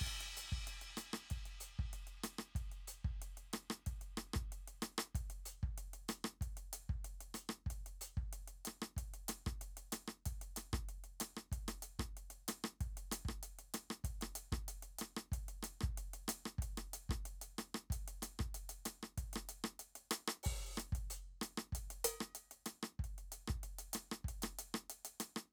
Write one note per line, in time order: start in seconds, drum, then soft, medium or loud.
0.01 kick medium
0.07 closed hi-hat soft
0.21 closed hi-hat soft
0.37 closed hi-hat medium
0.52 kick medium
0.67 closed hi-hat soft
0.81 closed hi-hat soft
0.97 closed hi-hat medium
0.97 cross-stick medium
1.13 cross-stick medium
1.30 kick medium
1.30 closed hi-hat soft
1.45 closed hi-hat soft
1.60 closed hi-hat medium
1.79 kick medium
1.93 closed hi-hat soft
2.07 closed hi-hat soft
2.24 cross-stick medium
2.24 closed hi-hat medium
2.38 cross-stick medium
2.55 kick medium
2.55 closed hi-hat soft
2.72 closed hi-hat soft
2.88 closed hi-hat medium
3.05 kick medium
3.22 closed hi-hat soft
3.37 closed hi-hat soft
3.53 cross-stick medium
3.53 closed hi-hat soft
3.70 cross-stick medium
3.86 kick medium
3.86 closed hi-hat soft
4.01 closed hi-hat soft
4.17 cross-stick medium
4.17 closed hi-hat soft
4.34 kick medium
4.34 cross-stick medium
4.52 closed hi-hat soft
4.68 closed hi-hat soft
4.82 cross-stick medium
4.82 closed hi-hat soft
4.98 cross-stick medium
5.15 kick medium
5.15 closed hi-hat soft
5.30 closed hi-hat soft
5.45 closed hi-hat medium
5.63 kick medium
5.78 closed hi-hat soft
5.93 closed hi-hat soft
6.09 closed hi-hat medium
6.09 cross-stick medium
6.24 cross-stick medium
6.41 kick medium
6.41 closed hi-hat soft
6.57 closed hi-hat soft
6.73 closed hi-hat medium
6.89 kick medium
7.05 closed hi-hat soft
7.21 closed hi-hat soft
7.34 closed hi-hat medium
7.34 cross-stick medium
7.49 cross-stick medium
7.66 kick medium
7.66 closed hi-hat soft
7.86 closed hi-hat soft
8.01 closed hi-hat medium
8.17 kick medium
8.33 closed hi-hat soft
8.48 closed hi-hat soft
8.65 cross-stick medium
8.65 closed hi-hat medium
8.82 cross-stick medium
8.97 kick medium
8.97 closed hi-hat soft
9.14 closed hi-hat soft
9.28 cross-stick medium
9.28 closed hi-hat medium
9.46 kick medium
9.46 cross-stick medium
9.61 closed hi-hat soft
9.77 closed hi-hat soft
9.92 cross-stick medium
9.92 closed hi-hat medium
10.08 cross-stick medium
10.26 kick medium
10.26 closed hi-hat medium
10.41 closed hi-hat soft
10.56 cross-stick soft
10.56 closed hi-hat medium
10.73 kick medium
10.73 cross-stick medium
10.89 closed hi-hat soft
11.04 closed hi-hat soft
11.20 cross-stick medium
11.20 closed hi-hat medium
11.37 cross-stick medium
11.52 kick medium
11.52 closed hi-hat soft
11.68 cross-stick medium
11.68 closed hi-hat soft
11.82 closed hi-hat medium
11.99 kick medium
11.99 cross-stick medium
12.17 closed hi-hat soft
12.30 closed hi-hat soft
12.48 cross-stick medium
12.48 closed hi-hat medium
12.64 cross-stick medium
12.81 kick medium
12.81 closed hi-hat soft
12.97 closed hi-hat soft
13.12 cross-stick medium
13.12 closed hi-hat medium
13.25 kick medium
13.25 cross-stick medium
13.43 closed hi-hat medium
13.59 closed hi-hat soft
13.74 cross-stick medium
13.74 closed hi-hat medium
13.90 cross-stick medium
14.04 kick medium
14.04 closed hi-hat soft
14.21 cross-stick medium
14.21 closed hi-hat soft
14.35 closed hi-hat medium
14.52 kick medium
14.52 cross-stick medium
14.68 closed hi-hat medium
14.82 closed hi-hat soft
14.99 cross-stick medium
14.99 closed hi-hat medium
15.17 cross-stick medium
15.32 kick medium
15.32 closed hi-hat soft
15.48 closed hi-hat soft
15.63 cross-stick medium
15.63 closed hi-hat medium
15.81 kick medium
15.81 cross-stick medium
15.97 closed hi-hat soft
16.13 closed hi-hat soft
16.28 cross-stick medium
16.28 closed hi-hat medium
16.45 cross-stick medium
16.58 kick medium
16.58 closed hi-hat soft
16.77 cross-stick medium
16.77 closed hi-hat soft
16.93 closed hi-hat medium
17.09 kick medium
17.09 cross-stick medium
17.25 closed hi-hat soft
17.41 closed hi-hat medium
17.58 cross-stick medium
17.58 closed hi-hat soft
17.74 cross-stick medium
17.90 kick medium
17.90 closed hi-hat medium
18.08 closed hi-hat soft
18.22 cross-stick medium
18.22 closed hi-hat medium
18.39 kick medium
18.39 cross-stick medium
18.54 closed hi-hat medium
18.69 closed hi-hat medium
18.85 cross-stick medium
18.85 closed hi-hat medium
19.03 cross-stick medium
19.18 kick medium
19.18 closed hi-hat soft
19.33 cross-stick medium
19.33 closed hi-hat soft
19.49 closed hi-hat medium
19.64 cross-stick medium
19.79 closed hi-hat medium
19.95 closed hi-hat soft
20.11 cross-stick medium
20.11 closed hi-hat medium
20.28 cross-stick medium
20.43 open hi-hat medium
20.43 kick medium
20.76 cross-stick medium
20.76 closed hi-hat soft
20.76 hi-hat pedal soft
20.92 kick medium
20.92 closed hi-hat soft
21.10 closed hi-hat medium
21.41 cross-stick medium
21.41 closed hi-hat medium
21.57 cross-stick medium
21.72 kick medium
21.72 closed hi-hat medium
21.90 closed hi-hat soft
22.04 closed hi-hat loud
22.20 cross-stick medium
22.35 closed hi-hat medium
22.51 closed hi-hat soft
22.66 cross-stick medium
22.66 closed hi-hat medium
22.83 cross-stick medium
22.99 kick medium
23.04 closed hi-hat soft
23.18 closed hi-hat soft
23.32 closed hi-hat medium
23.48 kick medium
23.48 cross-stick medium
23.63 closed hi-hat soft
23.79 closed hi-hat medium
23.93 cross-stick medium
23.93 closed hi-hat medium
24.11 cross-stick medium
24.24 kick medium
24.24 closed hi-hat soft
24.42 cross-stick medium
24.42 closed hi-hat medium
24.59 closed hi-hat medium
24.74 cross-stick medium
24.90 closed hi-hat medium
25.05 closed hi-hat medium
25.20 cross-stick medium
25.20 closed hi-hat medium
25.36 cross-stick medium